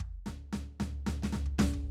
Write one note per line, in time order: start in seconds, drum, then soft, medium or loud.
0.00 kick medium
0.26 snare medium
0.26 floor tom medium
0.53 snare medium
0.53 floor tom medium
0.80 snare medium
0.80 floor tom medium
1.06 snare medium
1.06 floor tom medium
1.22 snare medium
1.22 floor tom medium
1.32 snare medium
1.32 floor tom medium
1.46 kick soft
1.58 snare loud
1.58 floor tom loud
1.73 kick medium